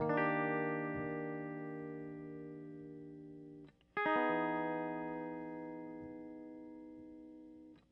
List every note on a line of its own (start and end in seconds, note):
0.01 3.66 A#3
0.09 3.72 D4
0.17 3.66 G4
3.97 6.80 G#4
4.06 7.77 D#4
4.16 7.75 B3
4.30 7.01 E3